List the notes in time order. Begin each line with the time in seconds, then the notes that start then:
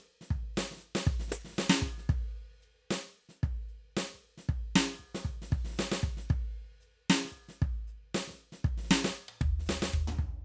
0.01 hi-hat pedal, crash
0.21 snare
0.30 kick, crash
0.54 snare, hi-hat pedal, crash
0.71 snare
0.77 snare, hi-hat pedal
0.81 crash
0.95 snare
1.07 kick, crash
1.20 snare
1.28 snare, hi-hat pedal, high tom
1.45 snare
1.48 kick, snare
1.52 snare
1.57 snare, hi-hat pedal
1.70 snare
1.82 kick, snare
1.98 snare
2.07 kick, hi-hat pedal, crash
2.60 hi-hat pedal, crash
2.90 snare, crash
3.13 hi-hat pedal
3.29 snare
3.43 kick, crash
3.68 hi-hat pedal, crash
3.97 snare, crash
4.14 kick
4.22 crash
4.38 snare
4.48 kick, crash
4.75 snare, crash
4.93 snare
4.99 kick, crash
5.15 snare
5.24 kick, hi-hat pedal, crash
5.42 snare
5.50 kick, snare, crash
5.65 snare
5.69 snare
5.72 snare
5.77 snare, hi-hat pedal
5.92 snare
6.03 kick, snare
6.17 snare
6.29 kick, crash
6.54 crash
6.80 hi-hat pedal, crash
7.10 snare, crash
7.25 snare
7.29 kick, snare
7.33 hi-hat pedal
7.49 snare
7.62 kick, crash
7.87 hi-hat pedal, crash
8.14 snare, crash
8.27 kick, snare
8.33 snare
8.38 hi-hat pedal, crash
8.52 snare
8.64 kick, crash
8.77 snare
8.83 snare
8.87 snare, hi-hat pedal
8.91 snare
9.04 snare
9.10 kick, hi-hat pedal
9.18 ride
9.28 mid tom
9.41 kick, mid tom
9.59 snare
9.66 snare, hi-hat pedal
9.82 snare
9.89 kick, hi-hat pedal
9.93 mid tom
10.07 floor tom
10.19 kick